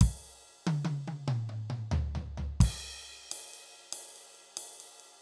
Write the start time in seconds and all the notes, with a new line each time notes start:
0.01 kick, ride
0.67 high tom
0.85 high tom
1.08 high tom
1.28 mid tom
1.49 mid tom
1.70 mid tom
1.91 floor tom
2.15 floor tom
2.38 floor tom
2.60 kick, ride, crash
3.32 ride
3.54 ride
3.71 ride
3.93 ride
4.16 ride
4.35 ride
4.57 ride
4.80 ride
5.00 ride